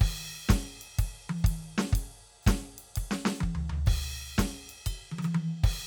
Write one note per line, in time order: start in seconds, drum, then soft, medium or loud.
0.01 kick loud
0.01 crash loud
0.46 snare loud
0.46 hi-hat pedal medium
0.50 kick loud
0.50 ride loud
0.82 ride medium
0.99 kick loud
0.99 ride loud
1.30 high tom loud
1.39 hi-hat pedal soft
1.45 kick loud
1.45 ride loud
1.79 snare loud
1.93 kick loud
1.93 ride loud
2.43 kick loud
2.43 hi-hat pedal soft
2.48 snare loud
2.48 ride loud
2.79 ride medium
2.96 kick medium
2.96 ride loud
3.12 snare loud
3.26 snare loud
3.35 hi-hat pedal soft
3.41 kick medium
3.41 high tom loud
3.56 floor tom loud
3.70 floor tom loud
3.87 kick loud
3.87 crash loud
4.34 hi-hat pedal soft
4.39 kick medium
4.39 snare loud
4.39 ride loud
4.70 ride medium
4.87 kick medium
4.87 ride bell loud
5.12 high tom loud
5.19 hi-hat pedal medium
5.19 high tom loud
5.25 high tom loud
5.35 high tom loud
5.64 kick loud
5.64 crash loud